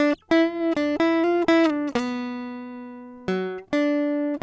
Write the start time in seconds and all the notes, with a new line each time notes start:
0.00 D4
0.32 E4
0.78 D4
1.01 E4
1.25 F4
1.49 E4
1.66 D4
1.97 B3
3.29 F#3
3.74 D4